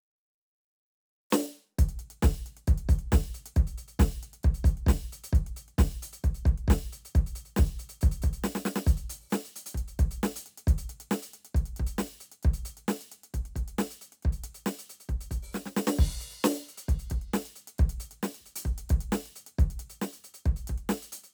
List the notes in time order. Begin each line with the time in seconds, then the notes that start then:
1.30 snare, hi-hat pedal
1.79 kick, closed hi-hat
1.89 closed hi-hat
1.99 closed hi-hat
2.10 closed hi-hat
2.22 kick, snare
2.34 closed hi-hat
2.46 closed hi-hat
2.57 closed hi-hat
2.67 kick, closed hi-hat
2.78 closed hi-hat
2.89 closed hi-hat, kick
2.99 closed hi-hat
3.12 kick, snare
3.24 closed hi-hat
3.34 closed hi-hat
3.46 closed hi-hat
3.56 kick, closed hi-hat
3.67 closed hi-hat
3.78 closed hi-hat
3.88 closed hi-hat
3.99 kick, snare
4.12 closed hi-hat
4.23 closed hi-hat
4.33 closed hi-hat
4.44 kick
4.54 closed hi-hat
4.64 closed hi-hat, kick
4.77 kick, closed hi-hat
4.86 kick, snare
5.00 closed hi-hat
5.12 closed hi-hat
5.24 closed hi-hat
5.33 kick, closed hi-hat
5.46 closed hi-hat
5.56 closed hi-hat
5.68 closed hi-hat
5.78 kick, snare
5.91 closed hi-hat
6.02 closed hi-hat
6.13 closed hi-hat
6.24 kick, closed hi-hat
6.34 closed hi-hat
6.45 kick, closed hi-hat
6.58 closed hi-hat
6.68 kick, snare
6.81 closed hi-hat
6.92 closed hi-hat
7.05 closed hi-hat
7.15 kick, closed hi-hat
7.26 closed hi-hat
7.35 closed hi-hat
7.45 closed hi-hat
7.56 kick, snare
7.66 closed hi-hat
7.79 closed hi-hat
7.89 closed hi-hat
8.01 closed hi-hat, kick
8.11 closed hi-hat
8.22 closed hi-hat, kick
8.33 closed hi-hat
8.44 snare, hi-hat pedal
8.55 snare
8.65 snare
8.76 snare
8.86 closed hi-hat, kick
8.97 closed hi-hat
9.10 closed hi-hat
9.20 open hi-hat
9.30 snare, hi-hat pedal
9.45 closed hi-hat
9.56 closed hi-hat
9.66 closed hi-hat
9.74 kick, closed hi-hat
9.88 closed hi-hat
9.99 kick, closed hi-hat
10.11 closed hi-hat
10.23 snare
10.36 closed hi-hat
10.46 closed hi-hat
10.57 closed hi-hat
10.67 kick, closed hi-hat
10.78 closed hi-hat
10.89 closed hi-hat
11.00 closed hi-hat
11.11 snare
11.22 closed hi-hat
11.33 closed hi-hat
11.45 closed hi-hat
11.55 kick, closed hi-hat
11.66 closed hi-hat
11.76 kick, closed hi-hat
11.86 closed hi-hat
11.98 snare
12.08 closed hi-hat
12.20 closed hi-hat
12.32 closed hi-hat
12.43 kick, closed hi-hat
12.53 closed hi-hat
12.65 closed hi-hat
12.77 closed hi-hat
12.88 snare
13.01 closed hi-hat
13.12 closed hi-hat
13.23 closed hi-hat
13.34 kick, closed hi-hat
13.45 closed hi-hat
13.56 kick, closed hi-hat
13.68 closed hi-hat
13.78 snare
13.91 closed hi-hat
14.01 closed hi-hat
14.12 closed hi-hat
14.22 kick, closed hi-hat
14.32 closed hi-hat
14.44 closed hi-hat
14.54 closed hi-hat
14.66 snare
14.79 closed hi-hat
14.89 closed hi-hat
15.00 closed hi-hat
15.09 kick, closed hi-hat
15.21 closed hi-hat
15.31 closed hi-hat, kick
15.42 open hi-hat
15.53 snare, hi-hat pedal
15.66 snare
15.76 snare
15.87 snare
15.99 kick, crash
16.10 closed hi-hat
16.31 closed hi-hat
16.44 snare
16.56 closed hi-hat
16.68 closed hi-hat
16.77 closed hi-hat
16.88 kick, closed hi-hat
16.99 closed hi-hat
17.10 kick, closed hi-hat
17.21 closed hi-hat
17.34 snare
17.45 closed hi-hat
17.56 closed hi-hat
17.67 closed hi-hat
17.78 kick, closed hi-hat
17.89 closed hi-hat
18.00 closed hi-hat
18.11 closed hi-hat
18.23 snare
18.34 closed hi-hat
18.40 kick
18.46 closed hi-hat
18.56 closed hi-hat
18.65 kick, closed hi-hat
18.78 closed hi-hat
18.89 kick, closed hi-hat
19.01 closed hi-hat
19.12 snare
19.26 closed hi-hat
19.36 closed hi-hat
19.46 closed hi-hat
19.59 kick, closed hi-hat
19.70 closed hi-hat
19.79 closed hi-hat
19.90 closed hi-hat
20.01 snare
20.13 closed hi-hat
20.24 closed hi-hat
20.46 kick, closed hi-hat
20.56 closed hi-hat
20.67 kick, closed hi-hat
20.78 closed hi-hat
20.89 snare
21.02 closed hi-hat
21.12 closed hi-hat
21.24 closed hi-hat